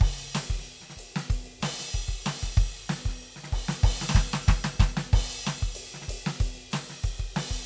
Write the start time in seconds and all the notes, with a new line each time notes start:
0.01 kick, crash
0.32 kick, snare, hi-hat pedal, crash
0.50 kick
0.59 snare
0.82 snare
0.90 snare
0.97 kick, hi-hat pedal, crash
1.16 snare
1.30 kick, crash
1.46 crash
1.61 kick, snare, hi-hat pedal, crash
1.80 snare
1.94 kick, crash
2.09 kick, crash
2.24 snare, hi-hat pedal, crash
2.42 kick, snare
2.57 kick, crash
2.89 snare, hi-hat pedal, crash
3.06 kick, snare
3.21 hi-hat pedal, crash
3.36 snare
3.44 snare
3.47 snare
3.51 kick, hi-hat pedal, crash
3.69 snare
3.84 kick, snare, hi-hat pedal, crash
3.91 snare
3.95 snare
4.02 snare
4.09 snare
4.15 kick, snare, hi-hat pedal
4.34 snare
4.47 kick, snare, hi-hat pedal
4.64 snare
4.80 kick, snare, hi-hat pedal
4.97 snare
5.13 kick, hi-hat pedal, crash
5.46 snare, hi-hat pedal
5.63 kick
5.76 hi-hat pedal, crash
5.94 snare
6.02 snare
6.09 kick, hi-hat pedal, crash
6.26 snare
6.40 kick, crash
6.55 crash
6.66 kick
6.71 snare, hi-hat pedal, crash
6.90 snare
7.04 kick, crash
7.18 kick, crash
7.34 snare, hi-hat pedal, crash
7.51 kick, snare